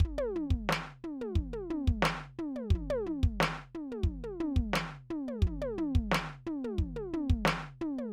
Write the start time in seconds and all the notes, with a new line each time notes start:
0.00 kick
0.04 floor tom
0.18 high tom
0.35 floor tom
0.51 kick
0.69 snare
0.73 snare
1.03 floor tom
1.21 mid tom
1.36 kick
1.53 mid tom
1.70 floor tom
1.87 kick
2.02 snare
2.05 snare
2.38 floor tom
2.56 high tom
2.70 kick, floor tom
2.90 high tom
3.06 floor tom
3.23 kick
3.40 snare
3.43 snare
3.74 floor tom
3.91 mid tom
4.04 kick
4.23 mid tom
4.39 floor tom
4.56 kick
4.73 snare
4.76 snare
5.10 floor tom
5.28 high tom
5.42 kick
5.46 floor tom
5.61 high tom
5.77 floor tom
5.95 kick
6.12 snare
6.14 snare
6.46 floor tom
6.64 mid tom
6.78 kick
6.96 mid tom
7.13 floor tom
7.30 kick
7.45 snare
7.48 snare
7.81 floor tom
7.98 high tom